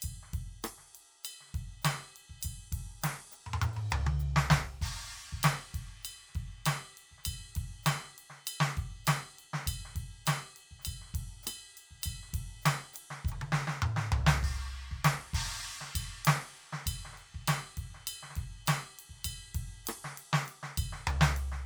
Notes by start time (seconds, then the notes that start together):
0.01 kick, hi-hat pedal, ride bell
0.12 kick
0.23 snare
0.28 snare
0.33 kick, ride
0.40 kick
0.62 cross-stick, hi-hat pedal, ride
0.78 snare
0.95 ride
1.23 hi-hat pedal, ride bell
1.40 snare
1.46 snare
1.49 snare
1.54 kick, ride
1.61 kick
1.82 snare, hi-hat pedal, ride bell
1.96 snare
2.16 ride
2.29 kick
2.41 kick, hi-hat pedal, ride bell
2.51 kick
2.72 kick, ride
2.79 kick
3.01 snare, hi-hat pedal, ride
3.31 hi-hat pedal
3.46 mid tom
3.53 mid tom
3.62 hi-hat pedal, mid tom
3.73 mid tom, ride
3.90 hi-hat pedal, floor tom
4.06 high tom
4.19 hi-hat pedal
4.36 snare
4.50 kick, snare, hi-hat pedal
4.81 kick, hi-hat pedal, crash
4.88 kick
5.32 kick
5.43 snare, hi-hat pedal, ride bell
5.74 kick, ride
5.80 kick
6.03 hi-hat pedal, ride bell
6.29 snare
6.35 kick, ride
6.42 kick
6.65 snare, hi-hat pedal, ride bell
6.97 ride
7.11 kick
7.18 snare
7.24 kick, hi-hat pedal, ride bell
7.55 kick, ride
7.62 kick
7.83 snare, hi-hat pedal, ride bell
7.97 snare
8.18 ride
8.30 snare
8.45 hi-hat pedal, ride bell
8.60 snare
8.66 snare
8.77 kick, ride
8.88 kick
9.04 snare, hi-hat pedal, ride bell
9.38 ride
9.53 snare
9.67 kick, hi-hat pedal, ride bell
9.74 kick
9.85 snare
9.96 kick, ride
10.02 kick
10.25 snare, hi-hat pedal, ride bell
10.56 ride
10.71 kick
10.79 snare, hi-hat pedal
10.85 kick, ride bell
11.01 snare
11.07 snare
11.11 kick, snare
11.15 ride
11.20 kick
11.43 cross-stick, hi-hat pedal
11.47 ride bell
11.77 ride bell
11.91 kick
12.02 hi-hat pedal, ride bell
12.06 kick
12.12 kick
12.23 snare
12.29 snare
12.33 kick, ride
12.40 kick
12.44 kick
12.62 snare, hi-hat pedal, ride bell
12.77 snare
12.93 hi-hat pedal, ride
13.10 snare
13.25 kick, hi-hat pedal
13.32 kick, high tom
13.38 kick, high tom
13.52 snare
13.67 snare
13.82 mid tom
13.96 snare
14.12 kick, floor tom
14.26 snare
14.36 snare
14.43 kick, crash
14.58 cross-stick
14.91 kick
15.04 snare, hi-hat pedal, ride
15.16 snare
15.33 kick, crash
15.48 kick
15.81 snare
15.95 kick, ride bell
16.02 kick
16.25 snare, hi-hat pedal, ride
16.37 snare
16.56 ride
16.73 snare
16.86 kick, hi-hat pedal, ride bell
16.96 kick
17.05 snare
17.13 snare
17.17 ride
17.34 kick
17.48 snare, hi-hat pedal, ride bell
17.58 snare
17.77 kick, ride
17.83 kick
17.94 snare
18.07 hi-hat pedal, ride bell
18.23 snare
18.30 snare
18.36 kick, ride
18.43 kick
18.66 snare, hi-hat pedal, ride bell
18.99 ride
19.09 kick, snare
19.18 snare
19.23 kick, hi-hat pedal, ride bell
19.55 kick, ride
19.85 cross-stick, hi-hat pedal, ride
20.04 snare
20.17 ride
20.33 snare
20.45 hi-hat pedal, ride
20.63 snare
20.77 kick, ride bell
20.85 kick
20.88 kick
20.92 snare
21.07 hi-hat pedal, floor tom
21.21 snare
21.36 ride
21.52 snare